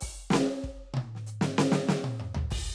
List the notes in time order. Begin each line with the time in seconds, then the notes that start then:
0.01 open hi-hat, kick
0.31 snare
0.34 snare
0.64 kick
0.94 high tom
0.97 high tom
1.15 snare
1.27 hi-hat pedal
1.41 snare
1.58 snare
1.72 snare
1.89 snare, hi-hat pedal
2.04 high tom
2.20 mid tom
2.35 kick, floor tom
2.51 kick, crash